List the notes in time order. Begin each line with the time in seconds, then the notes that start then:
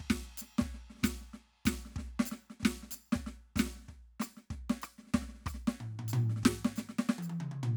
0.01 kick
0.11 kick, snare
0.38 snare, percussion
0.59 kick, snare
0.75 snare
0.91 snare
0.96 snare
0.99 snare
1.03 kick, snare
1.05 snare, percussion
1.22 snare
1.34 snare
1.66 kick, snare, percussion
1.74 snare
1.86 snare
1.91 snare
1.94 kick, snare
1.99 snare
2.07 snare
2.20 snare
2.26 percussion
2.32 snare
2.51 snare
2.64 kick, snare
2.66 snare
2.84 snare
2.88 snare
2.91 snare, percussion
2.93 snare
3.13 kick, snare
3.27 snare
3.57 kick, snare, percussion
3.60 snare
3.67 snare
3.71 snare
3.76 snare
3.80 snare
3.84 snare
3.89 kick, snare
4.21 cross-stick, snare, percussion
4.38 snare
4.51 kick, snare
4.71 snare
4.83 cross-stick, percussion
4.99 snare
5.04 snare
5.08 snare
5.15 kick, snare
5.23 snare
5.29 snare
5.35 snare
5.39 snare
5.42 snare
5.46 kick, cross-stick, snare, percussion
5.55 snare
5.68 snare
5.81 floor tom
6.00 floor tom
6.09 percussion
6.14 floor tom
6.31 snare
6.37 snare
6.42 kick, snare
6.46 snare
6.66 snare
6.77 snare, percussion
6.90 snare
6.99 snare
7.10 snare
7.19 high tom
7.23 percussion
7.31 high tom
7.41 mid tom
7.52 mid tom
7.64 floor tom